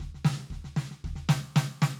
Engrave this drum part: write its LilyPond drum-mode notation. \new DrumStaff \drummode { \time 4/4 \tempo 4 = 114 <bd sn>16 sn16 sn16 sn16 <bd sn>16 sn16 sn16 sn16 <bd sn>16 sn16 sn8 sn8 sn8 | }